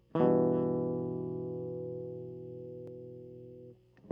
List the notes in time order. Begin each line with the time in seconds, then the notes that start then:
0.16 E3
0.21 G2 B2